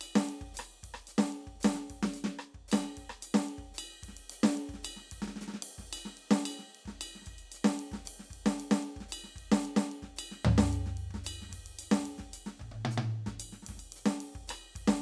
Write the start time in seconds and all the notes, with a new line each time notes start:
0.01 hi-hat pedal, ride bell
0.16 snare
0.29 ride
0.41 kick
0.54 hi-hat pedal, ride bell
0.59 cross-stick
0.83 kick, ride
0.94 cross-stick
1.07 hi-hat pedal, ride bell
1.18 snare
1.32 ride
1.47 kick
1.60 hi-hat pedal, ride bell
1.65 snare
1.75 snare
1.90 kick, ride
2.03 snare
2.14 hi-hat pedal, ride bell
2.24 snare
2.39 cross-stick
2.54 kick
2.68 hi-hat pedal, ride bell
2.73 snare
2.81 snare
2.97 kick, ride
3.10 cross-stick
3.22 hi-hat pedal, ride bell
3.34 snare
3.49 ride
3.58 kick
3.74 hi-hat pedal
3.78 ride bell
4.03 kick, ride
4.08 snare
4.17 ride
4.30 hi-hat pedal, ride
4.43 snare
4.57 ride
4.69 kick
4.74 snare
4.83 hi-hat pedal, ride bell
4.96 snare
5.11 kick, ride
5.22 snare
5.28 snare
5.36 snare
5.41 snare, hi-hat pedal
5.47 snare
5.54 snare
5.62 ride
5.78 kick, snare
5.93 hi-hat pedal, ride bell
6.05 snare
6.17 ride
6.31 snare
6.46 hi-hat pedal, ride bell
6.59 snare
6.75 ride
6.85 kick, snare
7.01 hi-hat pedal, ride bell
7.15 snare
7.22 snare
7.26 kick, snare, ride bell
7.30 snare
7.38 ride bell
7.52 hi-hat pedal, ride bell
7.65 snare
7.79 ride
7.92 kick, snare
8.05 hi-hat pedal, ride
8.19 snare
8.30 kick, ride
8.46 snare
8.58 hi-hat pedal, ride
8.71 snare
8.83 ride
8.96 kick
9.00 snare
9.09 hi-hat pedal, ride bell
9.24 snare
9.36 kick, ride
9.52 snare
9.62 hi-hat pedal, ride
9.76 snare
9.92 ride
10.02 kick, snare
10.16 hi-hat pedal, ride bell
10.31 snare
10.45 floor tom
10.58 snare
10.71 hi-hat pedal, ride
10.86 snare
10.97 ride
11.11 kick, snare
11.16 kick
11.24 hi-hat pedal, ride bell
11.42 snare
11.49 kick, snare, ride
11.54 snare
11.66 ride
11.79 hi-hat pedal, ride bell
11.92 snare
12.06 ride
12.18 kick, snare
12.33 hi-hat pedal, ride bell
12.46 snare
12.60 kick, mid tom
12.72 mid tom
12.85 mid tom
12.91 hi-hat pedal
12.98 mid tom
13.11 mid tom
13.26 kick, snare
13.39 hi-hat pedal, ride bell
13.52 snare
13.67 kick, snare, ride
13.74 kick, snare
13.79 ride bell
13.92 hi-hat pedal, ride
14.06 snare
14.21 ride
14.35 kick
14.48 cross-stick, hi-hat pedal, ride bell
14.75 kick, ride
14.81 kick
14.88 snare